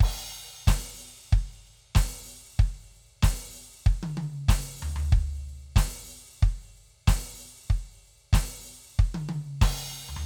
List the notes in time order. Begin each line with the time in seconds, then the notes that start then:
0.01 kick, crash
0.68 open hi-hat, kick, snare
1.33 kick
1.95 open hi-hat, kick, snare
2.60 kick
2.90 snare
3.23 open hi-hat, kick, snare
3.87 kick
4.03 high tom
4.18 high tom
4.49 open hi-hat, kick, snare
4.83 floor tom
4.97 floor tom
5.13 kick
5.76 open hi-hat, kick, snare
6.43 kick
7.08 open hi-hat, kick, snare
7.70 kick
8.33 open hi-hat, kick, snare
8.99 kick
9.15 high tom
9.29 high tom
9.62 kick, snare, crash
10.09 floor tom
10.17 floor tom